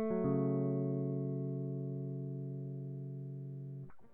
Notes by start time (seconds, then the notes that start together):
0.00 A3
0.12 F#3
0.26 C#3